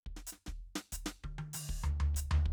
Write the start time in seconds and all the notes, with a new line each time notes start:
0.06 kick
0.16 snare
0.27 hi-hat pedal
0.32 snare
0.46 kick, snare
0.75 snare
0.92 kick, hi-hat pedal
1.06 snare
1.24 kick, high tom
1.38 high tom
1.53 hi-hat pedal, high tom
1.69 kick
1.83 floor tom
2.00 floor tom
2.14 kick, hi-hat pedal
2.31 floor tom
2.46 kick